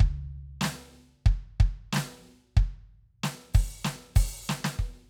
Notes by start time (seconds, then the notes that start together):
0.01 kick
0.62 snare
0.65 snare
1.27 kick
1.61 kick
1.93 snare
1.97 snare
2.58 kick
3.24 snare
3.55 open hi-hat, kick
3.82 snare, hi-hat pedal
4.01 snare
4.16 open hi-hat, kick
4.47 snare, hi-hat pedal
4.65 snare
4.80 kick